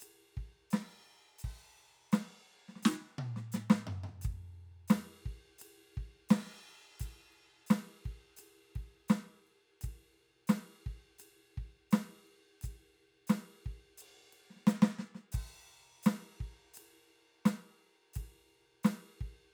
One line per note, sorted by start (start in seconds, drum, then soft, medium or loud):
0.01 hi-hat pedal medium
0.01 ride medium
0.38 kick soft
0.38 ride soft
0.72 snare medium
0.72 hi-hat pedal medium
0.72 crash soft
1.08 ride soft
1.40 hi-hat pedal medium
1.45 kick soft
1.45 crash soft
1.79 ride soft
2.13 snare loud
2.13 hi-hat pedal medium
2.13 ride soft
2.49 ride soft
2.69 snare soft
2.77 snare soft
2.83 snare soft
2.83 hi-hat pedal medium
2.86 snare loud
3.19 mid tom medium
3.37 snare soft
3.53 snare medium
3.53 hi-hat pedal medium
3.71 snare loud
3.88 floor tom medium
4.05 floor tom medium
4.23 kick medium
4.23 hi-hat pedal medium
4.23 ride soft
4.89 snare loud
4.89 hi-hat pedal medium
4.89 ride medium
5.27 kick soft
5.27 ride soft
5.60 hi-hat pedal medium
5.60 ride medium
5.96 kick soft
5.96 ride soft
6.30 snare loud
6.30 hi-hat pedal medium
6.30 crash medium
7.01 kick soft
7.01 hi-hat pedal medium
7.01 ride medium
7.33 ride soft
7.68 snare loud
7.68 hi-hat pedal soft
7.72 ride medium
8.06 kick soft
8.06 ride soft
8.38 hi-hat pedal medium
8.38 ride medium
8.77 kick soft
8.77 ride soft
9.09 snare loud
9.09 hi-hat pedal medium
9.09 ride soft
9.48 ride soft
9.82 kick soft
9.82 hi-hat pedal medium
9.82 ride medium
10.13 ride soft
10.48 snare loud
10.48 hi-hat pedal medium
10.48 ride medium
10.87 kick soft
10.87 ride soft
11.20 hi-hat pedal soft
11.20 ride medium
11.59 kick soft
11.59 ride soft
11.92 snare loud
11.92 hi-hat pedal medium
11.92 ride medium
12.28 ride soft
12.62 kick soft
12.62 hi-hat pedal medium
12.62 ride soft
13.28 snare loud
13.28 hi-hat pedal medium
13.28 ride medium
13.66 kick soft
13.66 ride soft
13.99 hi-hat pedal medium
13.99 ride soft
14.20 ride soft
14.34 ride soft
14.51 snare soft
14.57 snare soft
14.62 snare soft
14.66 snare soft
14.68 snare loud
14.68 hi-hat pedal medium
14.83 snare loud
15.00 snare medium
15.16 snare soft
15.33 kick medium
15.33 hi-hat pedal medium
15.33 crash soft
16.04 snare loud
16.04 hi-hat pedal medium
16.04 ride medium
16.41 kick soft
16.75 hi-hat pedal medium
16.75 ride medium
17.47 snare loud
17.47 hi-hat pedal medium
17.47 ride medium
18.15 kick soft
18.15 hi-hat pedal medium
18.15 ride medium
18.52 ride soft
18.84 snare loud
18.84 hi-hat pedal medium
18.84 ride medium
19.22 kick soft
19.22 ride soft